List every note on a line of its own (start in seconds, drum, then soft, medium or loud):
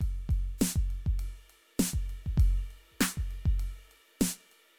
0.01 kick medium
0.01 ride medium
0.29 kick medium
0.29 ride medium
0.58 snare loud
0.58 hi-hat pedal medium
0.58 ride medium
0.76 kick medium
0.91 ride medium
1.07 kick medium
1.20 ride loud
1.50 ride medium
1.78 snare loud
1.78 hi-hat pedal soft
1.78 ride loud
1.94 kick medium
2.10 ride medium
2.27 kick medium
2.38 kick loud
2.38 ride loud
2.71 ride soft
2.92 kick soft
3.00 snare loud
3.00 hi-hat pedal soft
3.00 ride loud
3.18 kick medium
3.31 ride medium
3.46 kick medium
3.60 ride loud
3.92 ride medium
4.20 snare loud
4.20 hi-hat pedal medium
4.20 ride loud
4.52 ride medium